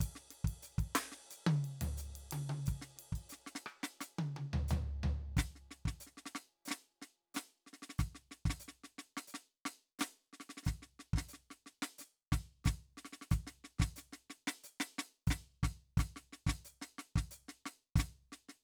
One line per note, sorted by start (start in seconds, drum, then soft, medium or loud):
0.01 kick medium
0.01 hi-hat pedal medium
0.01 ride medium
0.16 snare soft
0.31 snare soft
0.31 ride soft
0.45 kick medium
0.45 ride soft
0.63 hi-hat pedal medium
0.79 kick medium
0.79 ride soft
0.96 snare loud
0.96 ride medium
1.12 snare soft
1.31 hi-hat pedal medium
1.31 ride soft
1.47 high tom loud
1.65 ride soft
1.82 floor tom medium
1.82 ride medium
1.98 hi-hat pedal medium
2.16 ride soft
2.32 high tom medium
2.32 ride medium
2.50 high tom medium
2.66 kick medium
2.66 hi-hat pedal medium
2.66 ride soft
2.82 snare soft
2.97 snare soft
2.97 ride soft
3.13 kick soft
3.13 ride bell soft
3.30 snare soft
3.30 hi-hat pedal medium
3.47 snare soft
3.56 snare medium
3.67 cross-stick medium
3.84 snare medium
4.01 snare medium
4.01 hi-hat pedal medium
4.19 high tom medium
4.37 high tom medium
4.54 floor tom medium
4.69 floor tom loud
4.69 hi-hat pedal medium
5.04 floor tom medium
5.37 kick medium
5.37 snare medium
5.37 hi-hat pedal medium
5.56 snare soft
5.71 snare soft
5.86 kick medium
5.86 snare soft
6.01 hi-hat pedal medium
6.07 snare soft
6.18 snare soft
6.26 snare soft
6.36 snare medium
6.66 snare medium
6.66 hi-hat pedal medium
6.71 snare medium
7.02 snare soft
7.35 snare soft
7.35 hi-hat pedal medium
7.37 snare medium
7.67 snare soft
7.74 snare soft
7.83 snare soft
7.90 snare soft
7.99 kick medium
7.99 snare medium
7.99 hi-hat pedal medium
8.15 snare soft
8.32 snare soft
8.46 kick medium
8.46 snare soft
8.50 snare medium
8.60 hi-hat pedal medium
8.69 snare soft
8.84 snare soft
8.99 snare soft
9.18 snare medium
9.28 hi-hat pedal medium
9.35 snare medium
9.66 snare medium
9.99 snare soft
9.99 hi-hat pedal medium
10.02 snare loud
10.33 snare soft
10.41 snare soft
10.50 snare soft
10.58 snare soft
10.63 kick medium
10.63 snare soft
10.63 hi-hat pedal medium
10.83 snare soft
11.00 snare soft
11.14 kick medium
11.14 snare soft
11.18 snare medium
11.29 hi-hat pedal medium
11.34 snare soft
11.51 snare soft
11.67 snare soft
11.83 snare medium
11.99 snare soft
11.99 hi-hat pedal medium
12.33 kick medium
12.33 snare medium
12.65 kick medium
12.65 snare soft
12.65 hi-hat pedal medium
12.67 snare medium
12.98 snare soft
13.05 snare soft
13.13 snare soft
13.22 snare soft
13.31 kick medium
13.31 hi-hat pedal medium
13.47 snare soft
13.65 snare soft
13.79 kick medium
13.79 snare soft
13.82 snare medium
13.97 snare soft
13.97 hi-hat pedal medium
14.13 snare soft
14.30 snare soft
14.48 snare medium
14.64 hi-hat pedal medium
14.81 snare medium
14.99 snare medium
15.28 kick medium
15.28 snare medium
15.28 hi-hat pedal medium
15.64 kick medium
15.64 snare medium
15.98 kick medium
15.98 snare medium
15.98 hi-hat pedal medium
16.17 snare soft
16.33 snare soft
16.47 kick medium
16.47 snare soft
16.49 snare medium
16.65 hi-hat pedal medium
16.82 snare medium
16.99 snare soft
17.16 kick medium
17.16 snare medium
17.32 hi-hat pedal medium
17.49 snare soft
17.66 snare medium
17.96 kick medium
17.96 snare soft
17.96 hi-hat pedal medium
18.00 snare medium
18.33 snare soft
18.49 snare soft